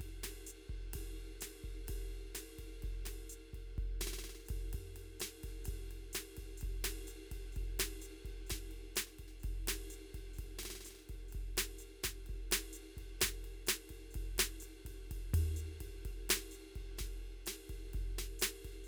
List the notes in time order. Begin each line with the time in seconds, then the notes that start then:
0.01 kick, ride
0.08 snare
0.24 snare, ride
0.47 hi-hat pedal
0.70 kick
0.75 kick
0.82 snare
0.94 kick, snare, ride
1.01 kick
1.41 snare, hi-hat pedal, ride
1.64 kick
1.70 kick
1.88 kick, snare, ride
1.96 kick
2.35 snare, hi-hat pedal, ride
2.59 kick, ride
2.64 kick
2.83 kick, ride
2.90 kick
3.06 snare, ride
3.30 hi-hat pedal
3.54 kick, ride
3.59 kick
3.79 kick, ride
3.85 kick
4.01 snare, hi-hat pedal, ride
4.08 snare
4.14 snare
4.19 snare
4.24 snare, ride
4.30 snare
4.35 snare
4.40 snare
4.45 snare, hi-hat pedal
4.49 kick, snare, ride
4.56 kick, snare
4.61 snare
4.74 kick, ride
4.81 kick
4.97 ride
5.20 snare, hi-hat pedal, ride
5.44 kick, ride
5.49 kick, snare
5.54 snare
5.65 kick, hi-hat pedal, ride
5.75 kick
5.91 ride
6.14 snare, hi-hat pedal, ride
6.37 kick, snare, ride
6.44 kick, snare
6.48 snare
6.58 hi-hat pedal, ride
6.64 kick
6.69 kick
6.85 snare, ride
7.08 hi-hat pedal, ride
7.32 kick, ride
7.37 kick
7.53 hi-hat pedal, ride
7.57 kick
7.63 kick
7.80 snare, ride
8.02 snare, hi-hat pedal, ride
8.11 snare
8.25 kick, ride
8.31 kick
8.47 snare, hi-hat pedal, ride
8.52 kick
8.58 kick
8.72 ride
8.96 snare, hi-hat pedal, ride
9.07 snare
9.19 kick, ride
9.25 kick, snare
9.35 snare
9.40 hi-hat pedal, ride
9.45 kick
9.51 kick
9.68 snare, ride
9.91 hi-hat pedal, ride
9.97 snare
10.15 kick, ride
10.20 kick
10.34 hi-hat pedal
10.39 kick, ride
10.45 kick
10.59 snare
10.64 snare, ride
10.71 snare
10.76 snare
10.81 snare
10.85 snare, hi-hat pedal, ride
10.95 snare
10.99 snare
11.02 snare
11.06 snare
11.08 kick, snare, ride
11.13 kick, snare
11.18 snare
11.29 hi-hat pedal
11.33 kick, ride
11.41 kick
11.58 snare, ride
11.79 hi-hat pedal, ride
12.04 kick, snare, ride
12.10 kick, snare
12.27 kick, ride
12.35 kick
12.52 snare, ride
12.60 snare
12.73 hi-hat pedal, ride
12.90 snare
12.98 kick, ride
13.03 kick
13.21 kick, snare, ride
13.27 snare
13.45 ride
13.67 snare, hi-hat pedal, ride
13.90 kick, ride
14.01 snare
14.11 hi-hat pedal, ride
14.16 kick
14.22 kick
14.39 snare, ride
14.61 hi-hat pedal, ride
14.86 kick, ride
14.91 kick
15.12 kick, ride
15.17 kick
15.34 floor tom, ride
15.57 hi-hat pedal
15.81 kick, ride
15.87 kick
16.06 kick, ride
16.11 kick
16.30 snare, ride
16.37 snare
16.52 hi-hat pedal
16.56 snare
16.61 snare
16.76 kick, ride
16.82 kick
16.98 kick, snare, hi-hat pedal, ride
17.06 kick
17.47 snare, hi-hat pedal, ride
17.70 kick, ride
17.75 kick
17.86 snare
17.94 kick, ride
18.01 kick
18.19 snare, ride
18.40 snare, hi-hat pedal, ride
18.65 kick, ride
18.70 kick, snare
18.85 hi-hat pedal